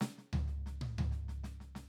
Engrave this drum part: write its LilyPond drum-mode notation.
\new DrumStaff \drummode { \time 4/4 \tempo 4 = 125 \tuplet 3/2 { <hhp sn>8 sn8 tomfh8 sn8 sn8 tommh8 tomfh8 sn8 sn8 sn8 sn8 sn8 } | }